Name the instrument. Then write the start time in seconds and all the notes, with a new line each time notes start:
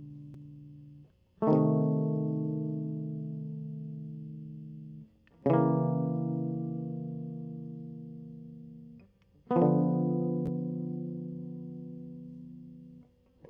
electric guitar
1.43 A3
1.48 D#3
1.53 C3
5.47 C#3 E3
5.54 A#3
9.36 D3
9.51 B3
9.57 F3 B3
9.63 D3